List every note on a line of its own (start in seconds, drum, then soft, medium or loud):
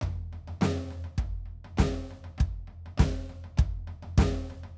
0.01 kick medium
0.01 mid tom loud
0.33 mid tom medium
0.48 mid tom medium
0.61 snare loud
0.61 mid tom loud
0.91 mid tom medium
1.04 mid tom medium
1.18 kick loud
1.18 mid tom medium
1.46 mid tom soft
1.65 mid tom medium
1.78 kick loud
1.78 snare loud
1.78 mid tom loud
2.11 mid tom medium
2.24 mid tom medium
2.38 kick loud
2.38 mid tom medium
2.68 mid tom soft
2.86 mid tom medium
2.98 kick loud
2.98 snare loud
2.98 mid tom loud
3.29 mid tom medium
3.44 mid tom soft
3.58 kick loud
3.58 mid tom loud
3.88 mid tom medium
4.03 mid tom medium
4.18 kick loud
4.18 snare loud
4.18 mid tom loud
4.50 mid tom medium
4.64 mid tom medium